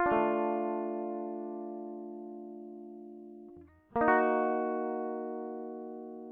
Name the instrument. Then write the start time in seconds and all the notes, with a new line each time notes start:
electric guitar
0.00 F4
0.07 D4
0.13 A3
0.18 D#3
3.97 A#3
4.02 D#4
4.09 F#4